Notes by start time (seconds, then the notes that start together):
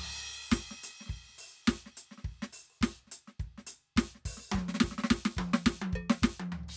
0.24 open hi-hat
0.50 closed hi-hat, kick, snare, hi-hat pedal
0.72 snare
0.84 closed hi-hat
1.01 snare
1.07 kick, snare
1.13 closed hi-hat
1.30 snare
1.39 open hi-hat
1.66 closed hi-hat, kick, snare, hi-hat pedal
1.87 snare
1.98 closed hi-hat
2.12 snare
2.18 snare
2.24 kick, snare, closed hi-hat
2.43 snare
2.53 open hi-hat
2.71 open hi-hat
2.78 kick, hi-hat pedal
2.83 closed hi-hat, snare
3.08 snare
3.12 closed hi-hat
3.28 snare
3.40 kick, closed hi-hat
3.59 snare
3.68 closed hi-hat
3.97 closed hi-hat, kick, snare
4.16 snare
4.26 open hi-hat, kick
4.38 snare
4.53 kick, hi-hat pedal, high tom
4.58 snare
4.69 snare
4.75 snare
4.81 kick, snare
4.92 snare
4.99 snare
5.05 snare
5.11 kick, snare
5.26 snare
5.38 kick, high tom
5.54 snare
5.67 kick, snare
5.83 high tom
5.93 kick, percussion
6.11 snare
6.23 kick, snare
6.32 hi-hat pedal
6.40 high tom
6.53 floor tom
6.64 kick
6.69 crash